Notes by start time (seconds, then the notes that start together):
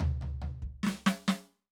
0.00 floor tom, high tom
0.21 floor tom, high tom
0.42 floor tom, high tom
0.62 kick
0.83 snare
0.87 snare
1.06 snare
1.28 snare